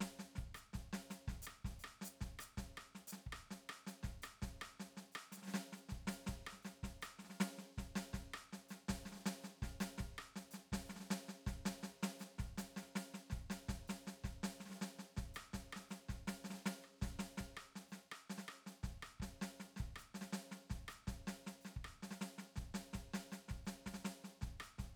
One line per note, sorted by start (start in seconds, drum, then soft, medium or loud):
0.01 snare medium
0.19 snare soft
0.36 kick soft
0.36 snare soft
0.55 cross-stick soft
0.55 hi-hat pedal soft
0.74 kick soft
0.74 snare soft
0.93 snare medium
1.11 snare soft
1.11 hi-hat pedal soft
1.28 kick soft
1.28 snare soft
1.42 hi-hat pedal medium
1.47 cross-stick medium
1.65 kick soft
1.65 snare soft
1.80 hi-hat pedal soft
1.84 cross-stick medium
2.02 snare soft
2.02 hi-hat pedal medium
2.21 kick soft
2.21 snare soft
2.39 cross-stick medium
2.39 hi-hat pedal medium
2.58 kick soft
2.58 snare soft
2.78 cross-stick medium
2.95 snare soft
3.08 hi-hat pedal medium
3.13 snare soft
3.27 kick soft
3.33 cross-stick medium
3.51 snare soft
3.70 cross-stick medium
3.87 snare soft
3.87 hi-hat pedal soft
4.03 kick soft
4.03 snare soft
4.23 cross-stick medium
4.23 hi-hat pedal soft
4.42 kick soft
4.42 snare soft
4.62 cross-stick medium
4.80 snare soft
4.97 snare soft
5.12 cross-stick medium
5.12 hi-hat pedal soft
5.32 snare soft
5.32 hi-hat pedal medium
5.38 snare soft
5.43 snare soft
5.45 snare soft
5.48 snare soft
5.53 snare medium
5.53 hi-hat pedal soft
5.73 snare soft
5.73 hi-hat pedal soft
5.89 kick soft
5.89 snare soft
6.08 snare medium
6.08 hi-hat pedal soft
6.27 kick soft
6.27 snare medium
6.47 cross-stick medium
6.53 snare soft
6.63 snare soft
6.63 hi-hat pedal soft
6.83 kick soft
6.83 snare soft
7.02 cross-stick medium
7.02 hi-hat pedal soft
7.19 snare soft
7.25 snare soft
7.29 snare soft
7.40 snare medium
7.40 hi-hat pedal soft
7.59 snare soft
7.78 kick soft
7.78 snare soft
7.96 snare medium
7.96 hi-hat pedal soft
8.14 kick soft
8.14 snare soft
8.34 cross-stick medium
8.53 snare soft
8.69 snare soft
8.69 hi-hat pedal soft
8.89 kick soft
8.89 snare medium
9.06 snare soft
9.12 snare soft
9.15 snare soft
9.26 snare medium
9.44 snare soft
9.44 hi-hat pedal soft
9.62 kick soft
9.62 snare soft
9.81 snare medium
9.81 hi-hat pedal medium
9.98 kick soft
9.98 snare soft
10.19 cross-stick medium
10.36 snare soft
10.51 snare soft
10.51 hi-hat pedal soft
10.72 kick soft
10.72 snare medium
10.86 snare soft
10.86 hi-hat pedal soft
10.96 snare soft
11.00 snare soft
11.11 snare medium
11.29 snare soft
11.47 kick soft
11.47 snare soft
11.66 snare medium
11.83 snare soft
12.03 snare medium
12.20 snare soft
12.20 hi-hat pedal soft
12.39 kick soft
12.39 snare soft
12.58 snare medium
12.58 hi-hat pedal medium
12.77 snare soft
12.83 snare soft
12.96 snare medium
12.96 hi-hat pedal soft
13.14 snare soft
13.30 kick soft
13.30 snare soft
13.50 snare medium
13.50 hi-hat pedal soft
13.69 kick soft
13.69 snare medium
13.88 snare medium
13.88 hi-hat pedal soft
14.07 snare soft
14.24 kick soft
14.24 snare soft
14.44 snare medium
14.60 snare soft
14.66 snare soft
14.70 snare soft
14.72 snare soft
14.82 snare medium
14.99 snare soft
15.17 kick soft
15.17 snare soft
15.34 cross-stick medium
15.34 hi-hat pedal soft
15.54 kick soft
15.54 snare soft
15.73 cross-stick medium
15.73 snare soft
15.89 snare soft
15.89 hi-hat pedal soft
16.09 kick soft
16.09 snare soft
16.28 snare medium
16.28 hi-hat pedal soft
16.45 snare soft
16.50 snare soft
16.54 snare soft
16.66 snare medium
16.84 cross-stick soft
17.02 kick soft
17.02 snare soft
17.19 snare medium
17.25 hi-hat pedal soft
17.38 kick soft
17.38 snare medium
17.57 cross-stick medium
17.76 snare soft
17.89 snare soft
17.89 hi-hat pedal soft
18.12 cross-stick medium
18.30 snare soft
18.38 snare soft
18.49 cross-stick medium
18.67 snare soft
18.84 kick soft
18.84 snare soft
19.03 cross-stick medium
19.03 hi-hat pedal soft
19.20 kick soft
19.20 snare soft
19.42 snare medium
19.60 snare soft
19.77 kick soft
19.77 snare soft
19.96 cross-stick medium
19.96 hi-hat pedal soft
20.15 snare soft
20.22 snare soft
20.33 snare medium
20.52 snare soft
20.70 kick soft
20.70 snare soft
20.89 cross-stick medium
20.89 hi-hat pedal soft
21.08 kick soft
21.08 snare soft
21.28 snare medium
21.47 snare soft
21.61 hi-hat pedal soft
21.65 snare soft
21.77 kick soft
21.85 cross-stick medium
22.03 snare soft
22.11 snare soft
22.21 snare medium
22.39 snare soft
22.56 kick soft
22.56 snare soft
22.75 snare medium
22.75 hi-hat pedal soft
22.94 kick soft
22.94 snare soft
23.14 snare medium
23.32 snare soft
23.32 hi-hat pedal soft
23.49 kick soft
23.49 snare soft
23.66 snare medium
23.66 hi-hat pedal soft
23.86 kick soft
23.86 snare soft
23.94 snare soft
24.05 snare medium
24.24 snare soft
24.42 kick soft
24.42 snare soft
24.60 cross-stick medium
24.60 hi-hat pedal soft
24.79 kick soft
24.79 snare soft